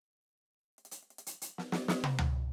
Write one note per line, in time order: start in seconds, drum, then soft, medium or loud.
0.78 closed hi-hat soft
0.85 closed hi-hat medium
0.92 closed hi-hat loud
1.03 closed hi-hat soft
1.10 closed hi-hat soft
1.18 closed hi-hat medium
1.27 closed hi-hat loud
1.42 closed hi-hat loud
1.58 snare medium
1.72 snare loud
1.88 snare loud
2.04 high tom loud
2.19 floor tom loud